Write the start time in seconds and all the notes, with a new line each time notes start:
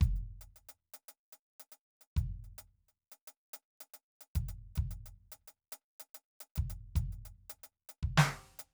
0.01 closed hi-hat, kick
0.16 closed hi-hat
0.41 closed hi-hat
0.56 closed hi-hat
0.69 closed hi-hat
0.94 closed hi-hat
1.08 closed hi-hat
1.33 closed hi-hat
1.60 closed hi-hat
1.72 closed hi-hat
2.01 closed hi-hat
2.16 closed hi-hat, kick
2.44 closed hi-hat
2.58 closed hi-hat
2.89 closed hi-hat
3.12 closed hi-hat
3.27 closed hi-hat
3.54 closed hi-hat
3.81 closed hi-hat
3.94 closed hi-hat
4.21 closed hi-hat
4.35 kick, closed hi-hat
4.49 closed hi-hat
4.76 kick, closed hi-hat
4.91 closed hi-hat
5.06 closed hi-hat
5.32 closed hi-hat
5.48 closed hi-hat
5.72 closed hi-hat
6.00 closed hi-hat
6.15 closed hi-hat
6.40 closed hi-hat
6.56 kick, closed hi-hat
6.70 closed hi-hat
6.96 kick, closed hi-hat
7.12 closed hi-hat
7.25 closed hi-hat
7.50 closed hi-hat
7.64 closed hi-hat
7.89 closed hi-hat
8.03 kick
8.18 snare
8.30 closed hi-hat
8.59 closed hi-hat